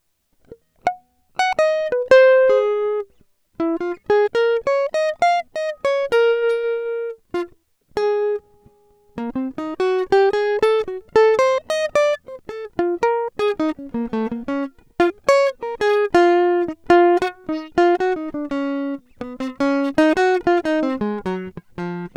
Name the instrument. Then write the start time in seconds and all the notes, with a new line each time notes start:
acoustic guitar
1.40 F#5
1.60 D#5
1.93 B4
2.12 C5
2.51 G#4
3.61 E4
3.82 F4
4.11 G#4
4.36 A#4
4.68 C#5
4.95 D#5
5.23 F5
5.57 D#5
5.86 C#5
6.13 A#4
7.36 F4
7.98 G#4
9.19 A#3
9.37 C4
9.59 D#4
9.81 F#4
10.13 G4
10.35 G#4
10.64 A4
10.89 F#4
11.17 A4
11.40 C5
11.71 D#5
11.96 D5
12.30 C5
12.50 A4
12.80 F4
13.04 A#4
13.40 G#4
13.61 D#4
13.71 C#4
13.96 A#3
14.14 A3
14.33 A#3
14.49 C#4
15.01 F4
15.30 C#5
15.64 A#4
15.82 G#4
16.16 F4
16.91 F4
17.23 F#4
17.50 D#4
17.79 F4
18.02 F#4
18.18 D#4
18.36 D4
18.52 C#4
19.22 B3
19.41 C4
19.61 C#4
19.99 D#4
20.18 F#4
20.48 F4
20.67 D#4
20.84 C4
21.02 G#3
21.27 F#3
21.79 F3